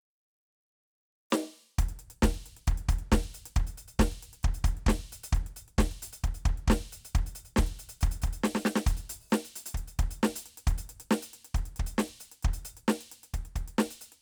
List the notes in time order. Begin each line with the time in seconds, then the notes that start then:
1.30 snare, hi-hat pedal
1.78 kick, closed hi-hat
1.89 closed hi-hat
1.99 closed hi-hat
2.10 closed hi-hat
2.22 kick, snare
2.34 closed hi-hat
2.46 closed hi-hat
2.57 closed hi-hat
2.67 kick, closed hi-hat
2.77 closed hi-hat
2.89 closed hi-hat, kick
2.99 closed hi-hat
3.12 kick, snare
3.24 closed hi-hat
3.34 closed hi-hat
3.46 closed hi-hat
3.56 kick, closed hi-hat
3.67 closed hi-hat
3.77 closed hi-hat
3.88 closed hi-hat
3.99 kick, snare
4.12 closed hi-hat
4.23 closed hi-hat
4.33 closed hi-hat
4.44 kick
4.54 closed hi-hat
4.64 closed hi-hat, kick
4.77 kick, closed hi-hat
4.86 kick, snare
5.00 closed hi-hat
5.12 closed hi-hat
5.24 closed hi-hat
5.32 kick, closed hi-hat
5.46 closed hi-hat
5.56 closed hi-hat
5.68 closed hi-hat
5.78 kick, snare
5.91 closed hi-hat
6.02 closed hi-hat
6.13 closed hi-hat
6.24 kick, closed hi-hat
6.34 closed hi-hat
6.45 kick, closed hi-hat
6.57 closed hi-hat
6.68 kick, snare
6.81 closed hi-hat
6.92 closed hi-hat
7.05 closed hi-hat
7.15 kick, closed hi-hat
7.26 closed hi-hat
7.35 closed hi-hat
7.45 closed hi-hat
7.56 kick, snare
7.66 closed hi-hat
7.79 closed hi-hat
7.89 closed hi-hat
8.01 closed hi-hat, kick
8.11 closed hi-hat
8.22 closed hi-hat, kick
8.33 closed hi-hat
8.44 snare, hi-hat pedal
8.55 snare
8.65 snare
8.76 snare
8.86 closed hi-hat, kick
8.97 closed hi-hat
9.09 closed hi-hat
9.20 open hi-hat
9.30 snare, hi-hat pedal
9.45 closed hi-hat
9.56 closed hi-hat
9.66 closed hi-hat
9.74 kick, closed hi-hat
9.88 closed hi-hat
9.99 kick, closed hi-hat
10.11 closed hi-hat
10.23 snare
10.36 closed hi-hat
10.46 closed hi-hat
10.57 closed hi-hat
10.67 kick, closed hi-hat
10.78 closed hi-hat
10.89 closed hi-hat
11.00 closed hi-hat
11.11 snare
11.22 closed hi-hat
11.33 closed hi-hat
11.45 closed hi-hat
11.54 kick, closed hi-hat
11.65 closed hi-hat
11.76 kick, closed hi-hat
11.86 closed hi-hat
11.98 snare
12.08 closed hi-hat
12.20 closed hi-hat
12.32 closed hi-hat
12.43 kick, closed hi-hat
12.53 closed hi-hat
12.65 closed hi-hat
12.77 closed hi-hat
12.88 snare
13.01 closed hi-hat
13.12 closed hi-hat
13.23 closed hi-hat
13.34 kick, closed hi-hat
13.45 closed hi-hat
13.56 kick, closed hi-hat
13.68 closed hi-hat
13.78 snare
13.90 closed hi-hat
14.01 closed hi-hat
14.12 closed hi-hat